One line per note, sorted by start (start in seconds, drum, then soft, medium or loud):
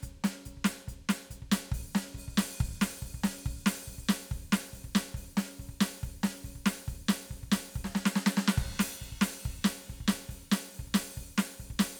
0.01 closed hi-hat medium
0.01 kick soft
0.01 snare soft
0.24 closed hi-hat medium
0.24 snare loud
0.45 closed hi-hat medium
0.45 kick soft
0.57 kick soft
0.64 closed hi-hat medium
0.64 snare loud
0.85 closed hi-hat medium
0.85 kick soft
0.85 snare soft
1.09 closed hi-hat medium
1.09 snare loud
1.27 closed hi-hat medium
1.27 kick soft
1.27 snare soft
1.42 kick soft
1.52 closed hi-hat loud
1.52 snare loud
1.72 open hi-hat medium
1.72 kick medium
1.95 open hi-hat medium
1.95 snare loud
2.14 open hi-hat medium
2.14 kick soft
2.14 snare soft
2.28 kick soft
2.37 open hi-hat loud
2.37 snare loud
2.57 open hi-hat medium
2.57 kick loud
2.57 snare soft
2.81 open hi-hat loud
2.81 snare loud
3.02 open hi-hat soft
3.02 kick soft
3.14 kick soft
3.24 open hi-hat medium
3.24 snare loud
3.43 open hi-hat soft
3.43 kick medium
3.43 snare soft
3.66 open hi-hat loud
3.66 snare loud
3.87 open hi-hat medium
3.87 kick soft
3.87 snare soft
3.98 kick soft
4.09 open hi-hat medium
4.09 snare loud
4.31 open hi-hat soft
4.31 kick medium
4.52 open hi-hat medium
4.52 snare loud
4.72 open hi-hat medium
4.72 kick soft
4.72 snare soft
4.84 kick soft
4.95 open hi-hat medium
4.95 snare loud
5.14 open hi-hat medium
5.14 kick medium
5.14 snare soft
5.37 open hi-hat medium
5.37 snare loud
5.59 open hi-hat soft
5.59 kick soft
5.59 snare soft
5.69 kick soft
5.81 open hi-hat medium
5.81 snare loud
6.02 open hi-hat medium
6.02 kick medium
6.23 open hi-hat medium
6.23 snare loud
6.44 open hi-hat medium
6.44 kick soft
6.44 snare soft
6.55 kick soft
6.66 open hi-hat medium
6.66 snare loud
6.87 open hi-hat medium
6.87 kick medium
6.87 snare soft
7.08 open hi-hat medium
7.08 snare loud
7.30 open hi-hat soft
7.30 kick soft
7.30 snare soft
7.43 kick soft
7.52 open hi-hat medium
7.52 snare loud
7.74 open hi-hat medium
7.74 kick medium
7.84 snare medium
7.95 snare loud
8.05 snare loud
8.16 snare loud
8.26 snare loud
8.37 snare loud
8.48 snare loud
8.57 kick loud
8.57 crash medium
8.79 open hi-hat loud
8.79 snare loud
9.01 open hi-hat medium
9.01 kick soft
9.01 snare soft
9.12 kick soft
9.21 open hi-hat loud
9.21 snare loud
9.42 open hi-hat medium
9.42 kick medium
9.42 snare soft
9.64 open hi-hat medium
9.64 snare loud
9.86 open hi-hat soft
9.86 kick soft
9.86 snare soft
10.00 kick soft
10.08 open hi-hat medium
10.08 snare loud
10.29 open hi-hat medium
10.29 kick soft
10.29 snare soft
10.52 open hi-hat medium
10.52 snare loud
10.74 open hi-hat medium
10.74 snare soft
10.79 kick soft
10.87 kick soft
10.94 open hi-hat loud
10.94 snare loud
11.16 open hi-hat medium
11.16 kick soft
11.38 open hi-hat medium
11.38 snare loud
11.59 open hi-hat medium
11.59 kick soft
11.70 kick soft
11.79 open hi-hat medium
11.79 snare loud